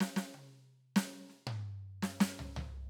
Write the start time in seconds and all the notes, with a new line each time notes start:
0.01 snare
0.16 snare
0.34 high tom
0.96 snare
1.29 snare
1.47 mid tom
2.03 snare
2.20 snare
2.39 floor tom
2.56 floor tom